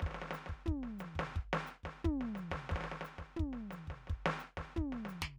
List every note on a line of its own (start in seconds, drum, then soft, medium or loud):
0.00 kick soft
0.00 snare soft
0.06 snare soft
0.11 snare soft
0.14 snare soft
0.21 snare soft
0.28 snare soft
0.31 snare medium
0.31 hi-hat pedal medium
0.46 kick soft
0.46 snare soft
0.65 kick soft
0.65 floor tom medium
0.83 snare soft
0.98 snare soft
0.98 hi-hat pedal medium
1.15 kick soft
1.15 snare medium
1.36 kick soft
1.53 snare medium
1.66 snare soft
1.66 hi-hat pedal medium
1.83 kick soft
1.83 snare soft
2.04 kick soft
2.04 floor tom medium
2.21 snare soft
2.35 snare soft
2.35 hi-hat pedal soft
2.51 kick soft
2.51 snare medium
2.69 kick soft
2.69 snare soft
2.76 snare soft
2.81 snare soft
2.84 snare soft
2.91 snare soft
3.01 snare soft
3.01 hi-hat pedal soft
3.18 kick soft
3.18 snare soft
3.36 kick soft
3.36 floor tom medium
3.53 snare soft
3.71 snare soft
3.71 hi-hat pedal medium
3.87 kick soft
3.87 snare soft
4.07 kick soft
4.07 snare soft
4.26 snare medium
4.39 snare soft
4.39 hi-hat pedal soft
4.57 kick soft
4.57 snare soft
4.62 kick soft
4.75 kick soft
4.75 floor tom medium
4.92 snare soft
5.05 snare soft
5.05 hi-hat pedal medium
5.21 kick soft
5.21 snare medium